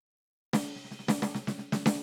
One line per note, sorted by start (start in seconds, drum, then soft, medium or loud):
0.53 snare loud
0.53 ride medium
0.76 snare soft
0.84 snare soft
0.91 snare soft
0.99 snare soft
1.07 snare soft
1.08 snare loud
1.22 snare medium
1.35 snare medium
1.47 snare medium
1.59 snare soft
1.72 snare loud
1.86 snare loud